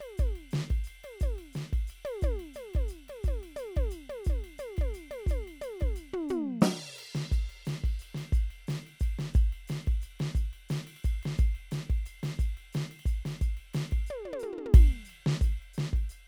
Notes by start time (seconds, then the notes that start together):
0.01 high tom, ride
0.18 kick, hi-hat pedal, high tom, ride
0.36 ride
0.51 snare, hi-hat pedal, ride
0.71 kick, ride
0.85 hi-hat pedal, ride
1.04 high tom, ride
1.21 kick, hi-hat pedal, high tom, ride
1.39 ride
1.54 snare, hi-hat pedal, ride
1.74 kick, ride
1.88 hi-hat pedal, ride
2.05 high tom, ride
2.22 kick, hi-hat pedal, high tom, ride
2.40 ride
2.55 hi-hat pedal, high tom, ride
2.74 kick, high tom, ride
2.89 hi-hat pedal, ride
3.09 high tom, ride
3.24 kick, hi-hat pedal, high tom, ride
3.44 ride
3.57 hi-hat pedal, high tom, ride
3.77 kick, high tom, ride
3.92 hi-hat pedal, ride
4.10 high tom, ride
4.25 kick, hi-hat pedal, ride
4.30 high tom
4.45 ride
4.59 hi-hat pedal, high tom, ride
4.78 kick, high tom, ride
4.95 hi-hat pedal, ride
5.11 high tom, ride
5.27 kick, hi-hat pedal, ride
5.31 high tom
5.48 ride
5.62 hi-hat pedal, high tom, ride
5.81 kick, high tom, ride
5.97 hi-hat pedal, ride
6.14 floor tom
6.30 floor tom, hi-hat pedal
6.62 snare, hi-hat pedal, crash
6.95 hi-hat pedal, ride
7.16 snare, ride
7.32 kick, hi-hat pedal, ride
7.50 ride
7.66 snare, hi-hat pedal, ride
7.85 kick, ride
8.00 hi-hat pedal, ride
8.15 snare, ride
8.33 kick, hi-hat pedal, ride
8.51 ride
8.68 snare, hi-hat pedal, ride
8.87 ride
9.01 kick, hi-hat pedal, ride
9.20 snare, ride
9.35 kick, hi-hat pedal, ride
9.53 ride
9.68 snare, hi-hat pedal, ride
9.87 kick, ride
10.03 hi-hat pedal, ride
10.20 snare, ride
10.36 kick, hi-hat pedal, ride
10.54 ride
10.70 snare, hi-hat pedal, ride
10.88 ride
10.97 ride
11.05 kick, hi-hat pedal, ride
11.24 snare, ride
11.39 kick, hi-hat pedal, ride
11.56 ride
11.72 snare, hi-hat pedal, ride
11.90 kick, ride
12.06 hi-hat pedal, ride
12.24 snare, ride
12.40 kick, hi-hat pedal, ride
12.58 ride
12.73 snare, hi-hat pedal, ride
12.92 ride
13.00 ride
13.06 kick, hi-hat pedal, ride
13.26 snare, ride
13.42 kick, hi-hat pedal, ride
13.58 ride
13.74 snare, hi-hat pedal, ride
13.92 kick, ride
14.07 hi-hat pedal, high tom
14.26 high tom
14.33 high tom
14.40 hi-hat pedal, mid tom
14.53 mid tom
14.58 mid tom
14.66 mid tom
14.74 kick, hi-hat pedal, ride
15.06 hi-hat pedal
15.10 ride
15.27 snare
15.42 kick, hi-hat pedal, ride
15.63 ride
15.74 hi-hat pedal
15.79 snare, ride
15.94 kick, ride
16.10 hi-hat pedal, ride